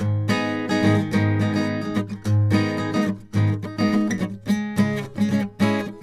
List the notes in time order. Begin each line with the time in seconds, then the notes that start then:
0.00 G#2 D#3
0.29 G#3 B3 D#4 G#4
0.70 G#3 B3 D#4 G#4
0.82 G#2 D#3 G#3
0.87 B3 D#4
1.13 G#2 D#3 G#3 B3
1.18 D#4
1.41 G#3 B3 D#4 G#4
1.55 D#4 G#4
1.59 G#3 B3
1.82 G#3 B3 D#4
1.96 G#3 B3 D#4
2.13 G#3
2.26 G#2
2.52 D#3 G#3 B3 D#4
2.56 G#4
2.79 D#4 G#4
2.95 G#3 B3 D#4
3.09 G#3
3.34 G#2 D#3 G#3 B3
3.39 D#4
3.64 G#3 D#4
3.79 G#3 B3 D#4
3.94 G#3 B3 D#4
4.08 F#3 B3 D#4
4.20 C3 F#3 D4
4.48 C#3 G#3
4.78 C#3 G#3 E4 G#4
5.04 D#4
5.16 C#4 E4
5.21 G#3
5.30 C#3 G#3
5.34 C#4 E4
5.61 G#3 C#4 E4 G#4
5.90 E4